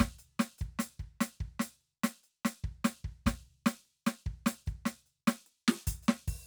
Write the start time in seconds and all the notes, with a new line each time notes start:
0.01 closed hi-hat, kick, snare
0.18 closed hi-hat
0.39 closed hi-hat, snare
0.58 closed hi-hat, kick
0.79 closed hi-hat, snare
0.99 kick, closed hi-hat
1.21 closed hi-hat, snare
1.40 kick, closed hi-hat
1.60 closed hi-hat, snare
1.81 closed hi-hat
2.04 closed hi-hat, snare
2.23 closed hi-hat
2.45 closed hi-hat, snare
2.64 kick, closed hi-hat
2.84 closed hi-hat, snare
3.04 kick
3.26 closed hi-hat, kick, snare
3.45 closed hi-hat
3.66 closed hi-hat, snare
3.85 closed hi-hat
4.06 closed hi-hat, snare
4.26 kick, closed hi-hat
4.46 closed hi-hat, snare
4.66 closed hi-hat, kick
4.86 closed hi-hat, snare
5.06 closed hi-hat
5.27 closed hi-hat, snare
5.46 closed hi-hat
5.68 snare
5.87 closed hi-hat, kick
6.03 hi-hat pedal
6.08 snare
6.28 kick, open hi-hat